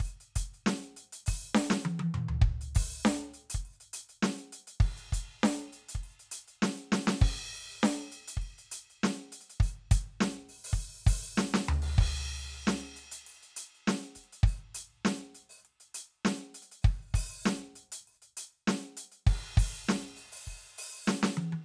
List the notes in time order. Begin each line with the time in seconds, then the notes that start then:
0.01 kick
0.06 hi-hat pedal, open hi-hat
0.21 closed hi-hat
0.36 closed hi-hat, kick
0.54 closed hi-hat
0.67 snare
0.83 closed hi-hat
0.97 closed hi-hat
1.13 closed hi-hat
1.27 open hi-hat, kick
1.42 open hi-hat
1.55 snare
1.71 snare
1.85 high tom
2.00 high tom
2.15 mid tom
2.29 floor tom
2.42 kick
2.62 closed hi-hat
2.75 open hi-hat, kick
2.94 open hi-hat
3.06 snare
3.21 closed hi-hat
3.34 closed hi-hat
3.50 closed hi-hat
3.55 kick
3.66 open hi-hat
3.74 hi-hat pedal
3.81 closed hi-hat
3.94 closed hi-hat
4.09 closed hi-hat
4.23 snare
4.38 closed hi-hat
4.53 closed hi-hat
4.68 closed hi-hat
4.81 kick, hi-hat pedal, crash
4.98 closed hi-hat
5.13 closed hi-hat, kick
5.30 closed hi-hat
5.44 snare
5.59 closed hi-hat
5.73 closed hi-hat
5.89 closed hi-hat
5.95 kick
6.04 open hi-hat
6.12 hi-hat pedal
6.20 closed hi-hat
6.32 closed hi-hat
6.48 closed hi-hat
6.63 snare
6.78 closed hi-hat
6.92 snare
7.08 snare
7.22 kick, crash
7.40 open hi-hat
7.53 open hi-hat
7.70 open hi-hat
7.82 snare, hi-hat pedal
7.99 closed hi-hat
8.12 closed hi-hat
8.28 closed hi-hat
8.37 kick
8.42 open hi-hat
8.50 hi-hat pedal
8.59 closed hi-hat
8.72 closed hi-hat
8.90 closed hi-hat
9.04 snare
9.18 closed hi-hat
9.33 closed hi-hat
9.41 closed hi-hat
9.50 closed hi-hat
9.61 open hi-hat, kick
9.68 hi-hat pedal
9.92 open hi-hat, kick
10.21 snare
10.49 open hi-hat
10.65 open hi-hat
10.73 kick
10.81 open hi-hat
10.94 open hi-hat
11.07 open hi-hat, kick
11.24 open hi-hat
11.38 snare
11.54 snare
11.69 floor tom
11.83 crash
11.99 kick, crash
12.16 open hi-hat
12.33 open hi-hat
12.52 open hi-hat
12.68 snare
12.97 closed hi-hat
13.12 closed hi-hat
13.27 open hi-hat
13.36 hi-hat pedal
13.43 closed hi-hat
13.57 closed hi-hat
13.75 closed hi-hat
13.88 snare
14.03 closed hi-hat
14.16 closed hi-hat, kick
14.24 closed hi-hat
14.33 closed hi-hat
14.44 open hi-hat, kick
14.56 hi-hat pedal
14.75 closed hi-hat
15.05 snare
15.19 closed hi-hat
15.35 open hi-hat
15.50 open hi-hat
15.58 hi-hat pedal
15.65 closed hi-hat
15.81 closed hi-hat
15.95 closed hi-hat
16.13 closed hi-hat
16.25 snare
16.39 closed hi-hat
16.55 closed hi-hat
16.62 closed hi-hat
16.72 open hi-hat
16.82 open hi-hat, kick
17.14 open hi-hat, kick
17.33 open hi-hat
17.46 snare
17.57 closed hi-hat, hi-hat pedal
17.76 closed hi-hat
17.92 closed hi-hat
18.08 open hi-hat
18.14 hi-hat pedal
18.22 closed hi-hat
18.37 closed hi-hat
18.53 closed hi-hat
18.68 snare
18.83 closed hi-hat
18.97 closed hi-hat
19.12 closed hi-hat
19.27 kick, crash
19.44 open hi-hat
19.58 open hi-hat, kick
19.75 open hi-hat
19.89 snare
20.03 open hi-hat
20.17 open hi-hat
20.33 open hi-hat
20.48 open hi-hat, kick
20.56 kick
20.65 open hi-hat
20.79 open hi-hat
20.93 open hi-hat
21.08 snare
21.23 snare
21.38 high tom
21.53 high tom